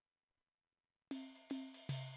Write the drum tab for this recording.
RD |--------x-xx-xx-|
T1 |--------o--o----|
FT |--------------o-|